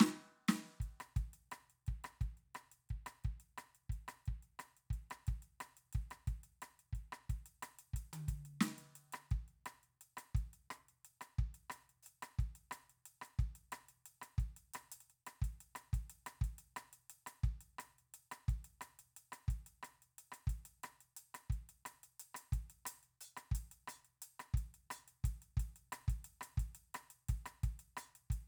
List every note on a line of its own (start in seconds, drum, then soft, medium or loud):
0.01 snare loud
0.48 closed hi-hat medium
0.48 snare loud
0.80 kick soft
0.80 closed hi-hat soft
1.00 cross-stick medium
1.00 closed hi-hat soft
1.16 kick medium
1.16 closed hi-hat soft
1.33 closed hi-hat soft
1.51 cross-stick medium
1.51 closed hi-hat soft
1.70 closed hi-hat soft
1.87 kick soft
1.87 closed hi-hat soft
2.04 cross-stick medium
2.04 closed hi-hat soft
2.21 kick soft
2.21 closed hi-hat soft
2.37 closed hi-hat soft
2.55 cross-stick medium
2.55 closed hi-hat soft
2.72 closed hi-hat soft
2.89 kick soft
2.89 closed hi-hat soft
3.06 cross-stick medium
3.06 closed hi-hat soft
3.24 kick soft
3.24 closed hi-hat soft
3.40 closed hi-hat soft
3.58 cross-stick medium
3.58 closed hi-hat soft
3.75 closed hi-hat soft
3.90 kick soft
3.90 closed hi-hat soft
4.08 cross-stick medium
4.08 closed hi-hat soft
4.26 kick soft
4.26 closed hi-hat soft
4.43 closed hi-hat soft
4.59 cross-stick medium
4.59 closed hi-hat soft
4.77 closed hi-hat soft
4.90 kick soft
4.90 closed hi-hat soft
5.10 cross-stick medium
5.10 closed hi-hat soft
5.27 kick soft
5.27 closed hi-hat soft
5.42 closed hi-hat soft
5.60 cross-stick medium
5.60 closed hi-hat soft
5.77 closed hi-hat soft
5.93 kick soft
5.93 closed hi-hat soft
6.11 cross-stick medium
6.11 closed hi-hat soft
6.27 kick soft
6.27 closed hi-hat soft
6.43 closed hi-hat soft
6.62 cross-stick medium
6.62 closed hi-hat soft
6.79 closed hi-hat soft
6.93 kick soft
6.93 closed hi-hat soft
7.12 cross-stick medium
7.29 kick soft
7.29 closed hi-hat soft
7.46 closed hi-hat soft
7.63 cross-stick medium
7.63 closed hi-hat soft
7.79 closed hi-hat soft
7.93 kick soft
7.93 closed hi-hat soft
8.13 closed hi-hat soft
8.13 high tom medium
8.28 kick soft
8.28 closed hi-hat soft
8.45 closed hi-hat soft
8.61 snare medium
8.61 closed hi-hat medium
8.78 closed hi-hat soft
8.95 closed hi-hat soft
9.13 cross-stick medium
9.13 closed hi-hat soft
9.31 kick medium
9.31 closed hi-hat soft
9.48 closed hi-hat soft
9.66 cross-stick medium
9.66 closed hi-hat soft
9.83 closed hi-hat soft
10.01 closed hi-hat soft
10.17 cross-stick medium
10.17 closed hi-hat soft
10.35 kick medium
10.35 closed hi-hat soft
10.53 closed hi-hat soft
10.70 cross-stick medium
10.70 closed hi-hat soft
10.88 closed hi-hat soft
11.05 closed hi-hat soft
11.21 cross-stick medium
11.21 closed hi-hat soft
11.38 kick medium
11.38 closed hi-hat soft
11.54 closed hi-hat soft
11.70 cross-stick medium
11.70 closed hi-hat soft
11.89 closed hi-hat soft
12.03 closed hi-hat soft
12.03 hi-hat pedal soft
12.22 cross-stick medium
12.22 closed hi-hat soft
12.39 kick medium
12.39 closed hi-hat soft
12.55 closed hi-hat soft
12.71 cross-stick medium
12.71 closed hi-hat soft
12.90 closed hi-hat soft
13.06 closed hi-hat soft
13.22 cross-stick medium
13.22 closed hi-hat soft
13.39 kick medium
13.39 closed hi-hat soft
13.55 closed hi-hat soft
13.72 cross-stick medium
13.72 closed hi-hat soft
13.89 closed hi-hat soft
14.06 closed hi-hat soft
14.22 cross-stick medium
14.22 closed hi-hat soft
14.38 kick medium
14.38 closed hi-hat soft
14.56 closed hi-hat soft
14.74 cross-stick medium
14.74 closed hi-hat medium
14.92 closed hi-hat medium
15.00 closed hi-hat soft
15.10 closed hi-hat soft
15.27 cross-stick medium
15.27 closed hi-hat soft
15.42 kick medium
15.42 closed hi-hat soft
15.60 closed hi-hat soft
15.75 cross-stick medium
15.75 closed hi-hat soft
15.93 kick medium
15.93 closed hi-hat soft
16.10 closed hi-hat soft
16.26 cross-stick medium
16.26 closed hi-hat soft
16.41 kick medium
16.41 closed hi-hat soft
16.58 closed hi-hat soft
16.76 cross-stick medium
16.76 closed hi-hat soft
16.93 closed hi-hat soft
17.10 closed hi-hat soft
17.26 cross-stick medium
17.26 closed hi-hat soft
17.43 kick medium
17.43 closed hi-hat soft
17.61 closed hi-hat soft
17.78 cross-stick medium
17.78 closed hi-hat soft
17.98 closed hi-hat soft
18.14 closed hi-hat soft
18.31 cross-stick medium
18.31 closed hi-hat soft
18.48 kick medium
18.48 closed hi-hat soft
18.64 closed hi-hat soft
18.81 cross-stick medium
18.81 closed hi-hat soft
18.99 closed hi-hat soft
19.16 closed hi-hat soft
19.32 cross-stick medium
19.32 closed hi-hat soft
19.48 kick medium
19.48 closed hi-hat soft
19.66 closed hi-hat soft
19.83 cross-stick medium
19.83 closed hi-hat soft
20.02 closed hi-hat soft
20.18 closed hi-hat soft
20.32 cross-stick medium
20.32 closed hi-hat soft
20.47 kick medium
20.47 closed hi-hat soft
20.65 closed hi-hat soft
20.83 cross-stick medium
20.83 closed hi-hat soft
21.01 closed hi-hat soft
21.17 closed hi-hat medium
21.34 cross-stick medium
21.34 closed hi-hat soft
21.50 kick soft
21.50 closed hi-hat soft
21.69 closed hi-hat soft
21.85 cross-stick medium
21.85 closed hi-hat soft
22.03 closed hi-hat soft
22.20 closed hi-hat medium
22.34 cross-stick medium
22.34 closed hi-hat medium
22.52 kick medium
22.52 closed hi-hat soft
22.70 closed hi-hat soft
22.85 cross-stick medium
22.85 closed hi-hat medium
23.03 closed hi-hat soft
23.21 closed hi-hat medium
23.37 cross-stick medium
23.37 closed hi-hat soft
23.51 kick medium
23.51 closed hi-hat medium
23.71 closed hi-hat soft
23.88 closed hi-hat medium
23.88 cross-stick medium
24.05 closed hi-hat soft
24.22 closed hi-hat medium
24.39 cross-stick medium
24.39 closed hi-hat soft
24.54 kick medium
24.54 closed hi-hat soft
24.74 closed hi-hat soft
24.90 closed hi-hat medium
24.90 cross-stick medium
25.08 closed hi-hat soft
25.24 kick medium
25.24 closed hi-hat soft
25.42 closed hi-hat soft
25.57 kick medium
25.57 closed hi-hat soft
25.76 closed hi-hat soft
25.92 cross-stick medium
25.92 closed hi-hat soft
26.08 kick medium
26.08 closed hi-hat soft
26.24 closed hi-hat soft
26.41 cross-stick medium
26.41 closed hi-hat soft
26.57 kick medium
26.57 closed hi-hat soft
26.75 closed hi-hat soft
26.94 cross-stick medium
26.94 closed hi-hat soft
27.10 closed hi-hat soft
27.29 kick medium
27.29 closed hi-hat soft
27.46 cross-stick medium
27.46 closed hi-hat soft
27.63 kick medium
27.63 closed hi-hat soft
27.79 closed hi-hat soft
27.97 closed hi-hat medium
27.97 cross-stick medium
28.15 closed hi-hat soft
28.30 kick soft
28.30 closed hi-hat soft